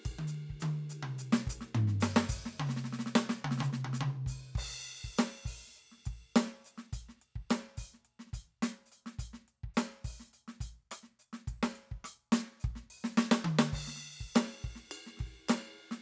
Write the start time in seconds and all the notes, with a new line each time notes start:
0.01 hi-hat pedal
0.05 kick, ride bell
0.11 kick
0.15 kick, high tom
0.20 open hi-hat
0.27 hi-hat pedal
0.34 ride
0.50 kick
0.60 hi-hat pedal, high tom, ride
0.89 hi-hat pedal, ride
1.03 mid tom
1.18 hi-hat pedal, ride
1.32 snare
1.47 kick, hi-hat pedal, ride
1.53 kick
1.56 kick
1.61 snare
1.75 floor tom
1.87 snare
2.00 snare, hi-hat pedal
2.16 snare
2.23 snare
2.28 kick, hi-hat pedal
2.36 kick
2.45 snare
2.60 mid tom
2.69 snare
2.76 snare
2.84 snare
2.92 snare
2.99 snare
3.06 snare
3.15 snare
3.29 snare
3.44 mid tom
3.51 snare
3.58 snare, mid tom
3.63 hi-hat pedal
3.73 snare
3.84 mid tom
3.93 snare, hi-hat pedal
4.01 mid tom
4.26 kick, hi-hat pedal
4.32 kick
4.55 kick, crash
4.63 kick
5.04 kick
5.18 closed hi-hat, snare
5.45 open hi-hat, kick
5.51 kick
5.67 snare
5.75 open hi-hat, hi-hat pedal
5.91 snare
5.97 snare
6.01 snare
6.05 kick, closed hi-hat
6.12 kick
6.36 closed hi-hat, snare
6.46 snare
6.64 hi-hat pedal, open hi-hat
6.78 snare
6.93 closed hi-hat, kick
7.09 snare
7.17 snare
7.21 closed hi-hat
7.35 kick
7.50 closed hi-hat, snare
7.64 snare
7.77 open hi-hat, kick
7.93 snare
8.05 closed hi-hat
8.19 snare
8.26 snare
8.33 closed hi-hat, kick
8.62 closed hi-hat, snare
8.86 hi-hat pedal
8.92 closed hi-hat
9.06 snare
9.19 closed hi-hat, kick
9.24 kick
9.33 snare
9.48 closed hi-hat
9.63 kick
9.74 closed hi-hat, snare, hi-hat pedal
10.04 open hi-hat, kick
10.10 kick
10.20 snare
10.26 hi-hat pedal
10.33 closed hi-hat
10.48 snare
10.57 closed hi-hat, kick, snare
10.66 kick
10.91 closed hi-hat, cross-stick
11.03 snare
11.19 hi-hat pedal
11.33 snare
11.47 kick, closed hi-hat
11.53 kick
11.63 snare
11.75 closed hi-hat
11.91 kick
12.04 closed hi-hat, cross-stick
12.32 closed hi-hat, snare
12.60 open hi-hat, hi-hat pedal
12.64 kick
12.71 kick
12.75 kick, snare
12.86 kick
12.90 open hi-hat
13.04 snare
13.17 snare
13.31 snare, hi-hat pedal
13.44 high tom
13.59 snare
13.73 kick, crash
13.78 kick
13.81 kick
13.87 snare
13.96 snare, closed hi-hat
14.20 kick
14.35 snare, hi-hat pedal, ride bell
14.47 snare
14.63 kick, ride
14.70 kick
14.75 snare
14.91 hi-hat pedal, ride bell
15.06 snare
15.17 kick, snare, ride
15.26 kick
15.49 snare, hi-hat pedal, ride bell
15.78 ride
15.91 snare